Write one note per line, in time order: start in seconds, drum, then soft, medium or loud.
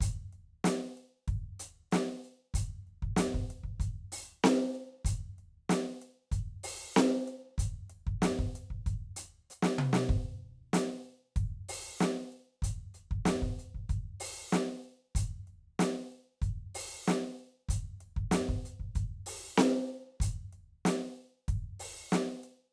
0.01 closed hi-hat loud
0.01 kick medium
0.33 closed hi-hat soft
0.65 closed hi-hat loud
0.65 snare loud
0.98 closed hi-hat soft
1.28 kick medium
1.28 closed hi-hat soft
1.60 open hi-hat loud
1.92 closed hi-hat medium
1.92 snare loud
1.92 hi-hat pedal medium
2.24 closed hi-hat soft
2.54 closed hi-hat loud
2.54 kick medium
2.87 closed hi-hat soft
3.03 kick medium
3.17 closed hi-hat loud
3.17 snare loud
3.35 kick medium
3.51 closed hi-hat soft
3.64 kick soft
3.80 closed hi-hat medium
3.80 kick medium
4.12 open hi-hat loud
4.44 snare loud
4.44 hi-hat pedal medium
4.76 closed hi-hat soft
5.05 closed hi-hat loud
5.05 kick medium
5.39 closed hi-hat soft
5.70 closed hi-hat loud
5.70 snare loud
6.02 closed hi-hat soft
6.32 closed hi-hat medium
6.32 kick medium
6.64 open hi-hat loud
6.97 snare loud
6.97 hi-hat pedal medium
7.28 closed hi-hat soft
7.58 closed hi-hat loud
7.58 kick medium
7.90 closed hi-hat soft
8.07 kick medium
8.22 closed hi-hat loud
8.22 snare loud
8.39 kick medium
8.56 closed hi-hat medium
8.71 kick soft
8.87 closed hi-hat soft
8.87 kick medium
9.17 open hi-hat loud
9.51 hi-hat pedal medium
9.63 snare loud
9.79 high tom loud
9.93 snare loud
10.09 kick medium
10.74 closed hi-hat loud
10.74 snare loud
11.05 closed hi-hat soft
11.36 kick medium
11.36 closed hi-hat medium
11.69 open hi-hat loud
12.00 closed hi-hat medium
12.00 snare loud
12.00 hi-hat pedal medium
12.33 closed hi-hat soft
12.63 closed hi-hat loud
12.63 kick medium
12.95 closed hi-hat soft
13.11 kick medium
13.26 closed hi-hat loud
13.26 snare loud
13.42 kick medium
13.59 closed hi-hat soft
13.75 kick soft
13.90 closed hi-hat soft
13.90 kick medium
14.20 open hi-hat loud
14.53 closed hi-hat medium
14.53 snare loud
14.53 hi-hat pedal medium
14.84 closed hi-hat soft
15.15 closed hi-hat loud
15.15 kick medium
15.48 closed hi-hat soft
15.80 closed hi-hat loud
15.80 snare loud
16.12 closed hi-hat soft
16.42 closed hi-hat medium
16.42 kick medium
16.75 open hi-hat loud
17.08 snare loud
17.08 hi-hat pedal medium
17.08 open hi-hat medium
17.39 closed hi-hat soft
17.69 closed hi-hat loud
17.69 kick medium
18.01 closed hi-hat soft
18.17 kick medium
18.32 closed hi-hat loud
18.32 snare loud
18.49 kick medium
18.66 closed hi-hat medium
18.80 kick soft
18.96 closed hi-hat medium
18.96 kick medium
19.27 open hi-hat loud
19.58 snare loud
19.58 hi-hat pedal medium
20.21 closed hi-hat loud
20.21 kick medium
20.53 closed hi-hat soft
20.86 closed hi-hat loud
20.86 snare loud
21.49 kick medium
21.49 closed hi-hat medium
21.80 open hi-hat loud
22.13 closed hi-hat medium
22.13 snare loud
22.13 hi-hat pedal medium
22.44 closed hi-hat soft